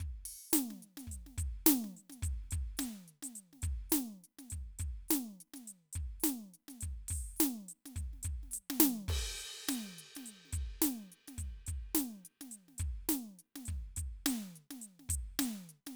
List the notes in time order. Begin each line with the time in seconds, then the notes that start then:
0.00 kick, closed hi-hat
0.25 open hi-hat
0.50 closed hi-hat, snare, hi-hat pedal
0.70 snare
0.82 closed hi-hat
0.97 snare, closed hi-hat
1.07 kick
1.11 closed hi-hat
1.26 snare
1.38 closed hi-hat, kick
1.66 closed hi-hat, snare, hi-hat pedal
1.84 snare
1.96 closed hi-hat
2.10 snare, closed hi-hat
2.22 closed hi-hat, kick
2.43 snare
2.51 closed hi-hat, kick
2.77 closed hi-hat, snare, hi-hat pedal
3.08 closed hi-hat
3.22 closed hi-hat, snare
3.35 closed hi-hat
3.53 snare
3.62 open hi-hat, kick
3.90 closed hi-hat, snare, hi-hat pedal
4.24 closed hi-hat
4.38 snare, closed hi-hat
4.50 closed hi-hat, kick
4.79 closed hi-hat, kick
5.08 closed hi-hat, snare, hi-hat pedal
5.40 closed hi-hat
5.53 snare, closed hi-hat
5.67 closed hi-hat
5.93 open hi-hat, kick
6.20 snare, hi-hat pedal
6.25 closed hi-hat
6.53 closed hi-hat
6.68 snare, closed hi-hat
6.80 closed hi-hat, kick
7.08 open hi-hat, kick
7.36 snare, hi-hat pedal
7.40 closed hi-hat
7.68 closed hi-hat
7.85 snare, closed hi-hat
7.96 closed hi-hat, kick
8.13 snare
8.23 closed hi-hat, kick
8.43 snare
8.51 closed hi-hat, hi-hat pedal
8.70 snare
8.80 snare
9.08 kick, crash
9.38 closed hi-hat
9.68 closed hi-hat, snare, hi-hat pedal
9.98 closed hi-hat
10.15 snare, closed hi-hat
10.26 closed hi-hat
10.45 snare
10.52 closed hi-hat, kick
10.82 closed hi-hat, snare
11.12 closed hi-hat
11.27 snare, closed hi-hat
11.38 closed hi-hat, kick
11.66 closed hi-hat, kick
11.95 closed hi-hat, snare
12.25 closed hi-hat
12.41 snare, closed hi-hat
12.51 closed hi-hat
12.68 snare
12.78 closed hi-hat, kick
13.09 closed hi-hat, snare
13.39 closed hi-hat
13.55 snare, closed hi-hat
13.65 closed hi-hat, kick
13.96 closed hi-hat, kick
14.26 closed hi-hat, snare
14.55 closed hi-hat
14.70 snare, closed hi-hat
14.81 closed hi-hat
14.99 snare
15.09 closed hi-hat, kick
15.39 closed hi-hat, snare
15.69 closed hi-hat
15.86 snare, closed hi-hat